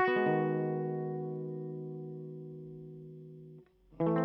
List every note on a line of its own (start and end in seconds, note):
0.00 3.70 F#4
0.08 3.63 B3
0.17 3.67 G#3
0.28 3.64 D#3
4.01 4.25 E3
4.07 4.25 A3
4.17 4.25 C4